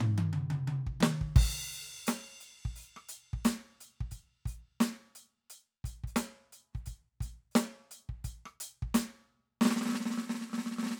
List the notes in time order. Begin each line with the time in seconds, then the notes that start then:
0.01 floor tom
0.18 high tom
0.33 mid tom
0.51 mid tom
0.68 mid tom
0.87 kick
1.01 snare, high tom
1.22 kick
1.36 kick, crash
1.73 open hi-hat
2.07 closed hi-hat, snare
2.41 closed hi-hat
2.66 kick
2.76 open hi-hat
2.97 cross-stick
3.09 closed hi-hat
3.34 kick
3.45 closed hi-hat, snare
3.76 cross-stick
3.81 closed hi-hat
4.01 kick
4.12 closed hi-hat, kick
4.46 open hi-hat, kick
4.81 open hi-hat, snare, hi-hat pedal
4.92 snare
5.16 closed hi-hat
5.50 closed hi-hat
5.85 closed hi-hat, kick
6.04 kick, hi-hat pedal
6.16 closed hi-hat, snare
6.53 closed hi-hat
6.73 kick, snare, hi-hat pedal
6.86 closed hi-hat, kick
7.21 closed hi-hat, kick
7.25 snare
7.52 hi-hat pedal
7.56 closed hi-hat, snare
7.91 closed hi-hat
8.09 kick
8.25 closed hi-hat, kick
8.46 cross-stick
8.61 closed hi-hat
8.83 kick
8.95 closed hi-hat, snare
9.61 snare
9.66 snare
9.71 snare
9.77 snare
9.81 snare
9.86 snare
9.89 snare
9.93 snare
9.95 snare
10.01 snare
10.06 snare
10.14 snare
10.18 snare
10.22 snare
10.27 snare
10.30 snare
10.35 snare
10.38 snare
10.42 snare
10.46 snare
10.50 snare
10.54 snare
10.58 snare
10.61 snare
10.65 snare
10.67 snare
10.72 snare
10.79 snare
10.83 snare
10.86 snare
10.90 snare
10.96 snare